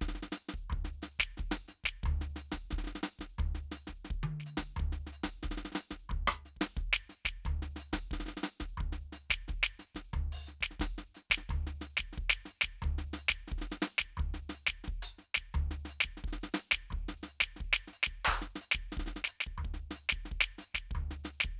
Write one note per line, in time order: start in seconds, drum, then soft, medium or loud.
0.01 kick soft
0.01 snare soft
0.08 snare soft
0.15 snare soft
0.22 snare soft
0.32 snare medium
0.32 hi-hat pedal medium
0.48 snare medium
0.54 kick soft
0.70 kick soft
0.70 floor tom medium
0.84 snare soft
1.02 snare soft
1.02 hi-hat pedal medium
1.19 kick soft
1.19 snare medium
1.37 kick soft
1.37 snare soft
1.51 snare medium
1.68 snare soft
1.68 hi-hat pedal medium
1.84 kick soft
1.84 snare medium
2.03 kick soft
2.03 floor tom loud
2.21 snare soft
2.36 snare soft
2.36 hi-hat pedal medium
2.52 kick soft
2.52 snare medium
2.70 kick soft
2.70 snare soft
2.78 snare soft
2.84 snare soft
2.87 snare soft
2.95 snare soft
3.03 snare medium
3.03 hi-hat pedal medium
3.19 kick soft
3.19 snare soft
3.38 kick soft
3.38 floor tom medium
3.54 snare soft
3.71 snare soft
3.71 hi-hat pedal medium
3.87 kick soft
3.87 snare soft
4.04 snare soft
4.10 kick soft
4.23 high tom loud
4.40 snare soft
4.46 hi-hat pedal medium
4.57 kick soft
4.57 snare medium
4.76 kick soft
4.76 floor tom medium
4.92 snare soft
5.06 snare soft
5.12 hi-hat pedal medium
5.23 kick soft
5.23 snare medium
5.43 kick soft
5.43 snare soft
5.51 snare soft
5.57 snare soft
5.65 snare soft
5.72 snare soft
5.75 snare medium
5.80 hi-hat pedal soft
5.90 kick soft
5.90 snare soft
6.09 kick soft
6.09 floor tom medium
6.27 cross-stick loud
6.45 snare soft
6.45 hi-hat pedal soft
6.56 kick soft
6.61 snare medium
6.77 kick soft
6.77 snare soft
6.93 snare loud
7.09 snare soft
7.09 hi-hat pedal medium
7.25 kick soft
7.25 snare medium
7.45 kick soft
7.45 floor tom medium
7.62 snare soft
7.76 snare soft
7.76 hi-hat pedal medium
7.93 kick soft
7.93 snare medium
8.11 kick soft
8.11 snare soft
8.20 snare soft
8.26 snare soft
8.28 snare soft
8.37 snare soft
8.41 snare medium
8.41 hi-hat pedal medium
8.60 kick soft
8.60 snare soft
8.77 kick soft
8.77 floor tom medium
8.92 snare soft
9.12 snare soft
9.12 hi-hat pedal medium
9.30 kick soft
9.30 snare medium
9.48 kick soft
9.48 snare soft
9.63 snare loud
9.79 snare soft
9.79 hi-hat pedal medium
9.95 kick soft
9.95 snare soft
10.13 kick soft
10.13 floor tom medium
10.32 open hi-hat medium
10.46 snare soft
10.46 hi-hat pedal soft
10.61 kick soft
10.61 snare medium
10.71 snare soft
10.79 kick soft
10.79 snare medium
10.98 snare soft
11.14 snare soft
11.14 hi-hat pedal medium
11.30 kick soft
11.30 snare loud
11.37 snare soft
11.49 kick soft
11.49 floor tom medium
11.67 snare soft
11.81 snare soft
11.81 hi-hat pedal soft
11.97 kick soft
11.97 snare medium
12.12 snare soft
12.17 kick soft
12.29 snare loud
12.45 snare soft
12.45 hi-hat pedal soft
12.61 kick soft
12.61 snare medium
12.82 kick soft
12.82 floor tom medium
12.98 snare soft
13.13 snare medium
13.17 hi-hat pedal medium
13.28 kick soft
13.28 snare loud
13.47 kick soft
13.47 snare soft
13.58 snare soft
13.61 snare soft
13.71 snare medium
13.82 snare medium
13.86 hi-hat pedal soft
13.98 kick soft
13.98 snare medium
14.17 kick soft
14.17 floor tom medium
14.34 snare soft
14.49 snare soft
14.54 hi-hat pedal soft
14.66 kick soft
14.66 snare medium
14.84 kick soft
14.84 snare soft
15.02 closed hi-hat loud
15.18 snare soft
15.18 hi-hat pedal soft
15.34 kick soft
15.34 snare medium
15.54 kick soft
15.54 floor tom medium
15.71 snare soft
15.85 snare soft
15.85 hi-hat pedal medium
16.00 kick soft
16.00 snare medium
16.17 snare soft
16.24 kick soft
16.24 snare soft
16.32 snare soft
16.43 snare soft
16.54 snare medium
16.54 hi-hat pedal medium
16.71 kick soft
16.71 snare loud
16.90 kick soft
16.90 floor tom medium
17.08 snare soft
17.23 snare soft
17.27 hi-hat pedal soft
17.40 kick soft
17.40 snare loud
17.56 snare soft
17.60 kick soft
17.73 snare loud
17.87 snare soft
17.93 hi-hat pedal medium
18.03 kick soft
18.03 snare medium
18.24 kick soft
18.24 percussion loud
18.41 snare soft
18.55 snare soft
18.61 hi-hat pedal medium
18.71 kick soft
18.71 snare medium
18.92 snare soft
18.97 kick soft
18.97 snare soft
19.06 snare soft
19.07 snare soft
19.24 snare medium
19.24 hi-hat pedal medium
19.40 snare medium
19.46 kick soft
19.58 floor tom medium
19.64 kick soft
19.74 snare soft
19.91 snare soft
19.95 hi-hat pedal medium
20.09 kick soft
20.09 snare medium
20.25 snare soft
20.31 kick soft
20.40 snare loud
20.58 snare soft
20.58 hi-hat pedal medium
20.74 kick soft
20.74 snare medium
20.91 kick soft
20.91 floor tom medium
21.11 snare soft
21.24 snare soft
21.24 hi-hat pedal soft
21.40 snare medium
21.44 kick soft